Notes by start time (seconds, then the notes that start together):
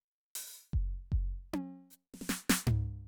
0.35 open hi-hat
0.69 hi-hat pedal
0.73 kick
1.12 kick
1.54 high tom
1.90 hi-hat pedal
2.14 snare
2.21 snare
2.29 snare
2.50 snare
2.67 floor tom